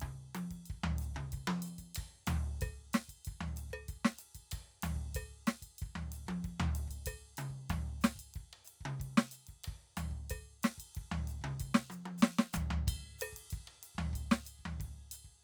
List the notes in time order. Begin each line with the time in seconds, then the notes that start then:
0.01 kick, mid tom, ride
0.35 hi-hat pedal, high tom, ride
0.51 kick, ride
0.66 ride bell
0.70 kick
0.84 floor tom
0.99 hi-hat pedal, ride
1.15 kick, mid tom
1.33 kick, ride bell
1.48 high tom
1.54 high tom
1.63 hi-hat pedal, ride bell
1.79 kick, ride bell
1.95 kick, ride bell, floor tom
2.27 floor tom, hi-hat pedal, ride
2.62 kick, ride bell, percussion
2.94 snare, hi-hat pedal, ride bell
3.09 kick, ride bell
3.26 kick, ride bell
3.41 floor tom
3.57 hi-hat pedal, ride
3.71 kick, percussion
3.89 kick, ride bell
4.05 snare
4.19 hi-hat pedal, ride
4.35 kick, ride bell
4.52 kick, ride bell, floor tom
4.83 floor tom, hi-hat pedal, ride
4.97 kick
5.15 kick, ride bell, percussion
5.48 snare, hi-hat pedal, ride bell
5.63 kick, ride bell
5.79 kick, ride bell
5.96 floor tom
6.13 hi-hat pedal, ride
6.27 kick, high tom
6.45 kick, ride
6.60 floor tom
6.75 hi-hat pedal, ride
6.88 kick, ride bell
7.07 kick, ride bell, percussion
7.38 hi-hat pedal, mid tom, ride bell
7.50 kick
7.70 kick, floor tom, ride
8.02 snare, hi-hat pedal, ride bell
8.17 kick, ride bell
8.35 kick, ride
8.53 floor tom
8.65 hi-hat pedal, ride
8.81 kick
8.86 mid tom
9.00 kick, ride
9.18 snare
9.32 hi-hat pedal, ride bell
9.47 kick, ride
9.64 kick, ride, floor tom
9.98 floor tom, hi-hat pedal, ride bell
10.12 kick
10.30 kick, ride bell, percussion
10.63 snare, hi-hat pedal, ride
10.78 kick, ride bell
10.96 kick, ride
11.12 floor tom
11.28 hi-hat pedal, ride
11.42 kick, mid tom
11.60 kick, ride bell
11.75 snare
11.90 hi-hat pedal, high tom
12.06 high tom
12.19 kick, hi-hat pedal
12.23 snare
12.39 snare
12.54 kick, floor tom, hi-hat pedal
12.71 floor tom
12.88 kick, ride bell
13.10 kick
13.19 hi-hat pedal, ride, percussion
13.33 kick, ride
13.51 kick, ride bell
13.68 floor tom
13.84 hi-hat pedal, ride
13.95 kick, floor tom
14.14 kick, ride bell
14.32 snare
14.46 hi-hat pedal, ride bell
14.60 kick
14.66 floor tom
14.81 kick, ride
15.12 hi-hat pedal, ride bell
15.25 kick